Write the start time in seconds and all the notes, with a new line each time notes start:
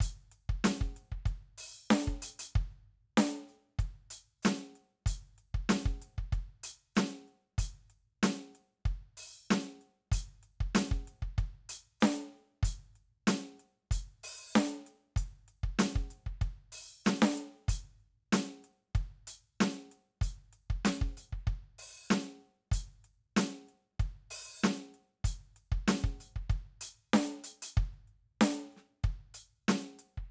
0.01 closed hi-hat, kick
0.32 closed hi-hat
0.50 kick
0.65 closed hi-hat, snare
0.82 kick
0.97 closed hi-hat
1.13 kick
1.26 kick, closed hi-hat
1.58 open hi-hat
1.91 snare, hi-hat pedal
2.08 kick
2.23 closed hi-hat
2.40 closed hi-hat
2.56 kick
3.18 closed hi-hat, snare
3.49 closed hi-hat
3.79 kick, closed hi-hat
4.11 closed hi-hat
4.43 closed hi-hat, snare, hi-hat pedal
4.76 closed hi-hat
5.07 closed hi-hat, kick
5.39 closed hi-hat
5.55 kick
5.70 closed hi-hat, snare
5.86 kick
6.03 closed hi-hat
6.19 kick
6.33 kick, closed hi-hat
6.64 open hi-hat
6.96 snare, hi-hat pedal
7.29 closed hi-hat
7.59 closed hi-hat, kick
7.91 closed hi-hat
8.24 closed hi-hat, snare
8.56 closed hi-hat
8.86 kick, closed hi-hat
9.18 open hi-hat
9.51 snare, hi-hat pedal, open hi-hat
9.82 closed hi-hat
10.12 closed hi-hat, kick
10.44 closed hi-hat
10.61 kick
10.76 closed hi-hat, snare
10.92 kick
11.08 closed hi-hat
11.23 kick
11.39 kick, closed hi-hat
11.70 open hi-hat
12.01 snare, hi-hat pedal
12.63 closed hi-hat, kick
12.96 closed hi-hat
13.28 closed hi-hat, snare
13.60 closed hi-hat
13.92 closed hi-hat, kick
14.24 open hi-hat
14.55 snare, hi-hat pedal
14.87 closed hi-hat
15.17 kick, closed hi-hat
15.49 closed hi-hat
15.64 kick
15.80 closed hi-hat, snare
15.96 kick
16.11 closed hi-hat
16.27 kick
16.42 kick, closed hi-hat
16.73 open hi-hat
17.06 closed hi-hat, snare, hi-hat pedal
17.23 snare
17.38 closed hi-hat
17.69 closed hi-hat, kick
18.01 closed hi-hat
18.33 closed hi-hat, snare
18.65 closed hi-hat
18.96 kick, closed hi-hat
19.28 open hi-hat
19.61 open hi-hat, snare, hi-hat pedal
19.92 closed hi-hat
20.22 closed hi-hat, kick
20.53 closed hi-hat
20.71 kick
20.86 closed hi-hat, snare
21.02 kick
21.18 closed hi-hat
21.33 kick
21.48 kick
21.79 open hi-hat
22.11 snare, hi-hat pedal
22.72 closed hi-hat, kick
23.05 closed hi-hat
23.37 closed hi-hat, snare
23.69 closed hi-hat
24.00 kick, closed hi-hat
24.31 open hi-hat
24.64 snare, hi-hat pedal
24.95 closed hi-hat
25.25 closed hi-hat, kick
25.57 closed hi-hat
25.73 kick
25.88 closed hi-hat, snare
26.04 kick
26.21 closed hi-hat
26.37 kick
26.50 kick, closed hi-hat
26.82 open hi-hat
27.14 snare, hi-hat pedal
27.45 closed hi-hat
27.63 closed hi-hat
27.78 kick
28.08 closed hi-hat
28.42 closed hi-hat, snare
28.73 snare, closed hi-hat
29.04 kick, closed hi-hat
29.35 open hi-hat
29.69 open hi-hat, snare, hi-hat pedal
30.00 closed hi-hat
30.18 kick